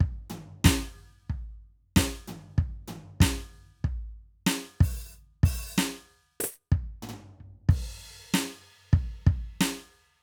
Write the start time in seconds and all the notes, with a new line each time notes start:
0.01 kick
0.30 floor tom, high tom
0.65 kick, snare
0.67 snare
1.30 kick
1.97 kick, snare
2.28 floor tom, high tom
2.59 kick
2.88 floor tom, high tom
3.21 kick, snare
3.85 kick
4.47 snare
4.81 open hi-hat, kick
5.12 hi-hat pedal
5.44 open hi-hat, kick
5.76 snare, hi-hat pedal
6.41 high tom
6.44 high tom
6.72 kick
7.03 floor tom
7.09 floor tom
7.41 kick
7.69 kick, crash
8.34 snare
8.93 kick
9.27 kick
9.61 snare